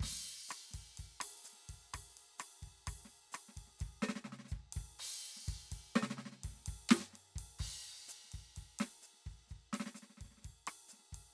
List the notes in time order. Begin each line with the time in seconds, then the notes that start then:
0.01 kick, snare, crash
0.07 kick
0.13 snare
0.18 snare
0.21 snare
0.24 snare
0.49 cross-stick, hi-hat pedal, ride
0.71 kick, snare, ride
0.80 kick
0.98 kick, hi-hat pedal, ride
1.05 kick
1.21 cross-stick, ride
1.45 hi-hat pedal, ride
1.53 snare
1.70 kick, ride
1.75 kick
1.94 kick, cross-stick, hi-hat pedal, ride
2.00 kick
2.18 ride
2.39 cross-stick, hi-hat pedal, ride
2.63 kick, ride
2.68 kick
2.88 kick, cross-stick, hi-hat pedal, ride
3.06 snare
3.10 ride
3.33 cross-stick, hi-hat pedal, ride
3.49 snare
3.57 kick, ride
3.68 snare
3.80 kick, hi-hat pedal, ride
4.03 snare, percussion
4.10 snare
4.16 snare
4.25 snare, mid tom
4.33 snare
4.40 snare
4.45 snare, hi-hat pedal
4.53 kick, snare
4.59 snare
4.61 snare
4.73 kick, ride
5.00 crash
5.37 snare
5.42 snare
5.49 kick, ride
5.55 kick
5.72 kick, snare, ride
5.96 snare, percussion
6.02 snare, mid tom
6.11 snare
6.18 snare, mid tom
6.26 snare
6.33 snare
6.38 snare
6.42 kick, snare, ride
6.47 kick, snare
6.51 snare
6.54 snare
6.62 snare
6.67 kick, ride
6.74 kick
6.90 snare, floor tom
7.01 snare
7.14 snare, ride
7.37 kick, ride
7.42 kick
7.60 kick, crash
7.67 kick
8.09 hi-hat pedal, ride
8.25 snare
8.33 kick, ride
8.40 kick
8.56 kick, hi-hat pedal, ride
8.63 kick
8.80 snare, ride
9.03 hi-hat pedal
9.14 snare
9.25 kick, ride
9.32 kick
9.48 kick, snare, hi-hat pedal, ride
9.57 kick
9.74 snare, ride
9.81 snare
9.87 snare
9.95 snare, hi-hat pedal, ride
10.03 snare
10.10 snare
10.18 kick, snare, ride
10.25 kick, snare
10.32 snare
10.38 snare
10.42 kick, snare, hi-hat pedal, ride
10.50 kick
10.68 cross-stick, ride
10.89 hi-hat pedal
10.94 snare
11.00 snare
11.13 kick, ride
11.18 kick